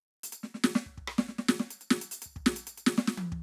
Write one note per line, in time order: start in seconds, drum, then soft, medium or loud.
0.24 percussion loud
0.33 percussion loud
0.44 snare medium
0.55 snare medium
0.64 snare loud
0.76 snare loud
0.86 kick soft
0.98 kick soft
1.08 high tom loud
1.19 snare loud
1.39 snare medium
1.49 snare loud
1.60 snare medium
1.71 percussion loud
1.81 percussion medium
1.91 snare loud
2.02 percussion loud
2.12 percussion loud
2.22 kick soft
2.22 percussion loud
2.46 snare loud
2.56 percussion loud
2.67 percussion loud
2.78 percussion medium
2.87 snare loud
2.98 snare loud
3.08 snare loud
3.18 high tom loud
3.32 kick medium